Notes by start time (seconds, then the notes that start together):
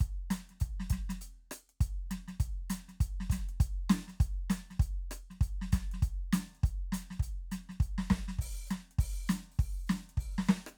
0.01 closed hi-hat, kick
0.31 closed hi-hat, snare
0.50 snare, closed hi-hat
0.61 closed hi-hat, kick
0.81 snare
0.91 kick, snare, closed hi-hat
1.10 snare, closed hi-hat
1.22 closed hi-hat
1.52 closed hi-hat, cross-stick
1.70 closed hi-hat
1.82 closed hi-hat, kick
2.07 kick
2.12 snare, closed hi-hat
2.29 snare, closed hi-hat
2.41 closed hi-hat, kick
2.62 kick
2.71 closed hi-hat, snare
2.89 snare, closed hi-hat
3.02 closed hi-hat, kick
3.21 snare
3.31 closed hi-hat, kick, snare
3.50 closed hi-hat
3.61 closed hi-hat, kick
3.91 closed hi-hat, snare
4.09 snare, closed hi-hat
4.21 closed hi-hat, kick
4.51 closed hi-hat, snare
4.71 snare, closed hi-hat
4.80 closed hi-hat, kick
5.12 closed hi-hat, cross-stick
5.31 snare, closed hi-hat
5.42 closed hi-hat, kick
5.63 snare
5.73 closed hi-hat, kick, snare
5.93 snare, closed hi-hat
6.03 closed hi-hat, kick
6.34 closed hi-hat, snare
6.56 closed hi-hat
6.64 closed hi-hat, kick
6.93 closed hi-hat, snare
7.11 snare, closed hi-hat
7.21 closed hi-hat, kick
7.53 closed hi-hat, snare
7.70 snare, closed hi-hat
7.81 closed hi-hat, kick
7.99 snare
8.11 kick, snare
8.29 snare
8.40 open hi-hat, kick
8.68 hi-hat pedal
8.72 snare, closed hi-hat
8.92 closed hi-hat
9.00 open hi-hat, kick
9.28 closed hi-hat, snare, hi-hat pedal
9.53 open hi-hat
9.60 open hi-hat, kick
9.88 closed hi-hat, snare, hi-hat pedal
10.10 closed hi-hat
10.18 open hi-hat, kick
10.39 snare
10.46 snare, hi-hat pedal
10.68 cross-stick